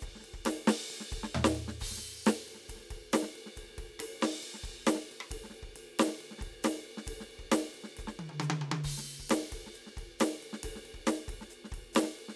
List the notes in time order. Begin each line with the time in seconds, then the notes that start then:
0.01 kick, hi-hat pedal, ride
0.09 kick
0.16 snare
0.20 snare
0.25 ride
0.34 kick
0.40 kick
0.45 snare, hi-hat pedal, ride
0.68 snare, ride
0.91 hi-hat pedal, ride
1.01 snare
1.13 kick, ride
1.20 kick
1.24 snare
1.35 hi-hat pedal, floor tom
1.45 snare
1.56 ride
1.69 snare
1.80 kick, hi-hat pedal, crash
1.89 kick, snare
1.98 snare
2.27 snare, hi-hat pedal, ride
2.49 ride
2.55 snare
2.69 kick, hi-hat pedal, ride
2.77 snare
2.81 snare
2.85 snare
2.91 kick, ride
2.97 kick
3.13 snare, hi-hat pedal, ride
3.23 snare
3.36 ride
3.47 snare
3.57 kick, hi-hat pedal, ride
3.64 snare
3.67 snare
3.70 snare
3.73 snare
3.79 kick, ride
3.85 kick
4.00 cross-stick, hi-hat pedal, ride
4.22 snare, ride
4.44 hi-hat pedal, ride
4.55 snare
4.64 kick, ride
4.70 kick
4.86 snare, hi-hat pedal, ride
4.96 snare
5.12 ride
5.21 cross-stick
5.29 kick, hi-hat pedal, ride
5.38 kick
5.40 kick
5.45 snare
5.51 snare
5.55 ride
5.63 kick
5.76 hi-hat pedal, ride
6.00 snare, ride
6.08 snare
6.18 hi-hat pedal, ride
6.32 snare
6.39 kick, snare
6.43 ride
6.48 kick
6.63 snare, hi-hat pedal, ride
6.89 ride
6.98 snare
7.06 kick, hi-hat pedal, ride
7.14 kick
7.21 snare
7.32 ride
7.40 kick
7.52 snare, hi-hat pedal, ride
7.75 ride
7.84 snare
7.98 kick, hi-hat pedal, ride
8.05 kick, snare
8.20 high tom
8.30 high tom
8.41 hi-hat pedal, high tom
8.51 high tom
8.62 high tom
8.72 high tom
8.85 kick, hi-hat pedal, crash
8.92 kick
8.99 snare
9.04 snare
9.20 kick
9.30 snare, hi-hat pedal, ride
9.53 kick, ride
9.59 kick
9.67 snare
9.74 hi-hat pedal, ride
9.87 snare
9.97 kick, snare, ride
10.20 snare, hi-hat pedal, ride
10.43 ride
10.53 snare
10.64 kick, hi-hat pedal, ride
10.71 kick
10.76 snare
10.86 ride
10.95 kick
11.07 snare, hi-hat pedal, ride
11.29 kick, ride
11.42 snare
11.51 hi-hat pedal, ride
11.65 snare
11.73 kick, ride
11.80 kick
11.94 snare, hi-hat pedal, ride
12.04 snare
12.20 ride
12.29 snare